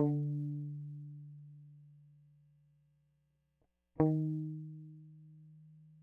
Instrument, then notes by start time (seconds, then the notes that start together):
electric guitar
0.00 D3
4.01 D#3